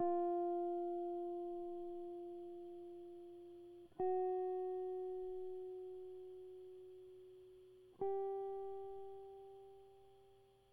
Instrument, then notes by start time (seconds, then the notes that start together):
electric guitar
0.00 F4
4.00 F#4
8.02 G4